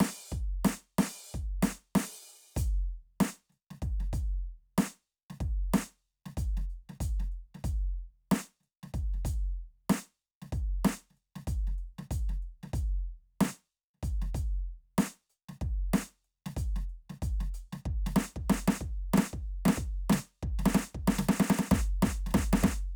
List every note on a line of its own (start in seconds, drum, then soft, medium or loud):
0.01 open hi-hat loud
0.01 snare loud
0.32 kick medium
0.32 hi-hat pedal soft
0.66 closed hi-hat loud
0.66 snare loud
0.99 open hi-hat loud
0.99 snare loud
1.34 kick medium
1.34 hi-hat pedal soft
1.63 closed hi-hat loud
1.63 snare loud
1.96 open hi-hat loud
1.96 snare loud
2.56 closed hi-hat loud
2.56 kick medium
2.56 hi-hat pedal medium
3.21 closed hi-hat loud
3.21 snare loud
3.50 snare soft
3.50 closed hi-hat soft
3.71 snare soft
3.83 kick medium
3.83 closed hi-hat soft
4.01 snare soft
4.14 closed hi-hat medium
4.14 kick medium
4.79 closed hi-hat loud
4.79 snare loud
5.31 snare soft
5.41 kick medium
5.41 closed hi-hat soft
5.74 closed hi-hat loud
5.74 snare loud
6.26 snare soft
6.38 closed hi-hat medium
6.38 kick medium
6.58 snare soft
6.70 closed hi-hat soft
6.90 snare soft
7.01 closed hi-hat loud
7.01 kick medium
7.20 snare soft
7.33 closed hi-hat soft
7.55 snare soft
7.65 closed hi-hat medium
7.65 kick medium
7.98 closed hi-hat soft
8.32 closed hi-hat medium
8.32 snare loud
8.61 snare soft
8.61 closed hi-hat soft
8.84 snare soft
8.95 closed hi-hat medium
8.95 kick medium
9.14 snare soft
9.26 closed hi-hat loud
9.26 kick medium
9.90 closed hi-hat loud
9.90 snare loud
10.43 snare soft
10.53 closed hi-hat soft
10.53 kick medium
10.86 closed hi-hat medium
10.86 snare loud
11.11 snare soft
11.18 closed hi-hat soft
11.36 snare soft
11.48 closed hi-hat medium
11.48 kick medium
11.68 snare soft
11.79 closed hi-hat soft
11.99 snare soft
12.12 closed hi-hat medium
12.12 kick medium
12.30 snare soft
12.43 closed hi-hat soft
12.64 snare soft
12.74 closed hi-hat medium
12.74 kick medium
13.41 closed hi-hat medium
13.41 snare loud
13.45 snare medium
13.95 snare soft
14.04 closed hi-hat medium
14.04 kick medium
14.22 snare soft
14.35 closed hi-hat medium
14.35 kick medium
14.99 closed hi-hat loud
14.99 snare loud
15.30 closed hi-hat soft
15.49 snare soft
15.62 kick medium
15.62 closed hi-hat soft
15.66 crash soft
15.94 closed hi-hat loud
15.94 snare loud
16.25 closed hi-hat soft
16.47 snare medium
16.57 closed hi-hat medium
16.57 kick medium
16.77 snare soft
16.90 closed hi-hat soft
17.10 snare soft
17.23 closed hi-hat medium
17.23 kick medium
17.41 snare soft
17.55 closed hi-hat medium
17.73 snare medium
17.86 kick medium
18.07 snare medium
18.17 snare loud
18.37 kick medium
18.51 snare loud
18.68 snare loud
18.82 kick medium
19.14 snare loud
19.18 snare loud
19.34 kick medium
19.66 snare loud
19.69 snare loud
19.78 kick medium
20.11 snare loud
20.13 snare loud
20.43 kick medium
20.60 snare medium
20.66 snare loud
20.75 snare loud
20.95 kick medium
21.08 snare loud
21.19 snare loud
21.30 snare loud
21.41 snare loud
21.51 snare loud
21.60 snare loud
21.68 kick soft
21.68 snare loud
21.72 kick loud
22.03 kick medium
22.03 snare loud
22.27 snare medium
22.32 snare soft
22.35 kick loud
22.35 snare loud
22.54 snare loud
22.64 kick medium
22.64 snare loud